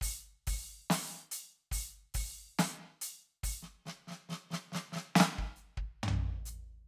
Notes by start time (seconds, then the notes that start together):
0.01 open hi-hat, kick
0.47 open hi-hat, kick
0.90 open hi-hat, snare
1.31 open hi-hat
1.71 open hi-hat, kick
2.14 open hi-hat, kick
2.59 open hi-hat, snare
3.01 open hi-hat
3.43 open hi-hat, kick
3.62 snare
3.85 snare
4.07 snare
4.10 snare
4.29 snare
4.31 snare
4.50 snare
4.53 snare
4.72 snare
4.75 snare
4.92 snare
4.96 snare
5.15 snare
5.20 snare
5.38 kick
5.56 hi-hat pedal
5.77 kick
6.03 high tom
6.08 floor tom
6.45 hi-hat pedal